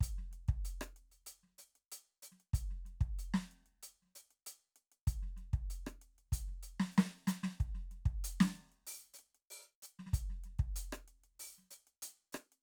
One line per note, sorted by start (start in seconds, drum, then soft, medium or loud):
0.01 closed hi-hat medium
0.01 kick soft
0.18 snare soft
0.31 snare soft
0.31 closed hi-hat soft
0.48 kick medium
0.48 closed hi-hat soft
0.65 closed hi-hat medium
0.81 cross-stick medium
0.97 closed hi-hat soft
1.12 closed hi-hat soft
1.27 open hi-hat medium
1.43 snare soft
1.47 snare soft
1.59 closed hi-hat soft
1.59 hi-hat pedal medium
1.76 closed hi-hat soft
1.92 open hi-hat medium
2.23 closed hi-hat soft
2.23 hi-hat pedal medium
2.32 snare soft
2.40 closed hi-hat soft
2.54 closed hi-hat medium
2.54 kick medium
2.71 snare soft
2.85 snare soft
2.85 closed hi-hat soft
3.01 kick medium
3.01 closed hi-hat soft
3.19 closed hi-hat soft
3.34 snare medium
3.52 closed hi-hat soft
3.66 closed hi-hat soft
3.83 open hi-hat medium
4.02 snare soft
4.06 snare soft
4.16 closed hi-hat soft
4.16 hi-hat pedal medium
4.31 closed hi-hat soft
4.47 closed hi-hat medium
4.76 closed hi-hat soft
4.92 closed hi-hat soft
5.07 closed hi-hat medium
5.07 kick medium
5.23 snare soft
5.37 snare soft
5.37 closed hi-hat soft
5.54 kick medium
5.54 closed hi-hat soft
5.71 closed hi-hat medium
5.87 cross-stick medium
6.02 closed hi-hat soft
6.19 closed hi-hat soft
6.32 closed hi-hat medium
6.32 kick soft
6.48 snare soft
6.63 open hi-hat medium
6.80 snare medium
6.92 hi-hat pedal soft
6.98 snare loud
7.28 snare medium
7.28 hi-hat pedal loud
7.44 snare medium
7.60 kick medium
7.60 closed hi-hat soft
7.75 snare soft
7.91 snare soft
7.91 closed hi-hat soft
8.06 kick medium
8.06 closed hi-hat soft
8.24 closed hi-hat loud
8.41 snare loud
8.56 closed hi-hat soft
8.72 closed hi-hat soft
8.87 open hi-hat loud
9.14 hi-hat pedal medium
9.19 closed hi-hat soft
9.35 closed hi-hat soft
9.51 open hi-hat medium
9.83 hi-hat pedal medium
9.99 snare soft
10.07 snare soft
10.14 closed hi-hat medium
10.14 kick medium
10.30 snare soft
10.44 snare soft
10.44 closed hi-hat soft
10.59 kick medium
10.59 closed hi-hat soft
10.76 closed hi-hat medium
10.93 cross-stick medium
11.08 closed hi-hat soft
11.24 closed hi-hat soft
11.40 open hi-hat medium
11.58 snare soft
11.62 snare soft
11.71 hi-hat pedal medium
11.87 closed hi-hat soft
12.03 open hi-hat loud
12.33 cross-stick medium
12.33 closed hi-hat soft
12.33 hi-hat pedal medium
12.52 closed hi-hat soft